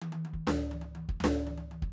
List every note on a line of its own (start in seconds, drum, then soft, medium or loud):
0.01 high tom loud
0.12 high tom medium
0.25 high tom medium
0.33 kick soft
0.47 snare loud
0.47 floor tom loud
0.71 high tom medium
0.81 high tom medium
0.95 high tom medium
1.09 kick medium
1.20 snare loud
1.20 floor tom loud
1.47 high tom medium
1.57 high tom medium
1.71 high tom medium
1.82 kick medium